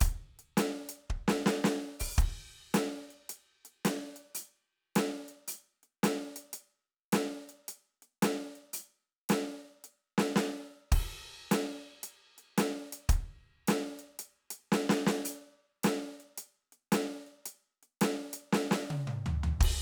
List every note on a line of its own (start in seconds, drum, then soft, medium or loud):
0.01 closed hi-hat loud
0.01 kick loud
0.39 closed hi-hat medium
0.58 snare loud
0.58 closed hi-hat loud
0.89 closed hi-hat loud
1.10 kick medium
1.28 snare loud
1.46 snare loud
1.65 snare loud
2.00 open hi-hat loud
2.00 kick medium
2.18 kick loud
2.18 hi-hat pedal loud
2.18 crash medium
2.75 snare loud
2.75 closed hi-hat loud
3.11 closed hi-hat soft
3.30 closed hi-hat loud
3.66 closed hi-hat medium
3.85 snare loud
3.85 closed hi-hat loud
4.17 closed hi-hat medium
4.35 closed hi-hat loud
4.96 snare loud
4.96 closed hi-hat loud
5.29 closed hi-hat medium
5.48 closed hi-hat loud
5.84 closed hi-hat soft
6.04 snare loud
6.04 closed hi-hat loud
6.37 closed hi-hat loud
6.54 closed hi-hat loud
7.13 snare loud
7.13 closed hi-hat loud
7.50 closed hi-hat medium
7.69 closed hi-hat loud
8.03 closed hi-hat soft
8.23 snare loud
8.23 closed hi-hat loud
8.56 closed hi-hat soft
8.74 closed hi-hat loud
9.30 snare loud
9.30 closed hi-hat loud
9.85 closed hi-hat medium
10.18 snare loud
10.36 snare loud
10.92 kick loud
10.92 crash loud
11.52 snare loud
11.52 closed hi-hat loud
12.04 closed hi-hat loud
12.39 closed hi-hat medium
12.58 snare loud
12.58 closed hi-hat loud
12.93 closed hi-hat loud
13.10 kick loud
13.10 closed hi-hat loud
13.68 snare loud
13.68 closed hi-hat loud
13.99 closed hi-hat medium
14.20 closed hi-hat loud
14.51 closed hi-hat loud
14.72 snare loud
14.90 snare loud
15.07 snare loud
15.26 closed hi-hat loud
15.84 snare loud
15.84 closed hi-hat loud
16.21 closed hi-hat soft
16.38 closed hi-hat loud
16.73 closed hi-hat soft
16.92 snare loud
16.92 closed hi-hat loud
17.27 closed hi-hat soft
17.46 closed hi-hat loud
17.83 closed hi-hat soft
18.02 snare loud
18.02 closed hi-hat loud
18.34 closed hi-hat loud
18.53 snare loud
18.72 snare loud
18.91 high tom loud
19.08 mid tom loud
19.26 floor tom loud
19.44 floor tom loud
19.61 kick loud
19.61 ride loud
19.61 crash loud